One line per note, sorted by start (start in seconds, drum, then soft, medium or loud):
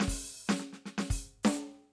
0.00 snare loud
0.07 open hi-hat loud
0.07 kick medium
0.47 snare loud
0.47 hi-hat pedal medium
0.59 snare soft
0.73 snare soft
0.85 snare medium
0.98 snare medium
1.10 open hi-hat loud
1.10 kick medium
1.43 snare loud
1.43 hi-hat pedal medium